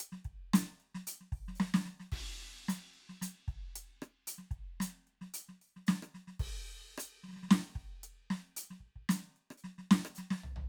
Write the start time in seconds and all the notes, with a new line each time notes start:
0.01 closed hi-hat
0.13 snare
0.25 kick, closed hi-hat
0.54 closed hi-hat, snare
0.81 closed hi-hat
0.95 snare
1.08 closed hi-hat
1.21 snare
1.33 kick, open hi-hat
1.49 snare
1.56 hi-hat pedal
1.61 snare
1.75 snare
1.86 snare
2.01 snare
2.13 kick, ride
2.69 closed hi-hat, snare
2.95 closed hi-hat
3.10 snare
3.22 closed hi-hat, snare
3.49 kick, closed hi-hat
3.76 closed hi-hat
4.03 cross-stick
4.28 closed hi-hat
4.39 snare
4.52 kick, closed hi-hat
4.81 closed hi-hat, snare
5.08 closed hi-hat
5.22 snare
5.35 closed hi-hat
5.49 snare
5.62 open hi-hat
5.77 snare
5.87 snare, hi-hat pedal
6.03 cross-stick
6.15 snare
6.28 snare
6.40 kick, crash
6.69 closed hi-hat
6.99 closed hi-hat, cross-stick
7.24 snare
7.29 snare
7.33 snare
7.37 snare
7.49 snare
7.52 snare
7.76 kick
8.04 closed hi-hat
8.31 snare
8.57 closed hi-hat
8.71 snare
8.81 kick
8.96 kick
9.10 closed hi-hat, snare
9.37 closed hi-hat
9.51 cross-stick
9.58 hi-hat pedal
9.65 snare
9.79 snare
9.92 snare
10.06 cross-stick
10.16 snare, hi-hat pedal
10.31 snare
10.44 floor tom
10.57 floor tom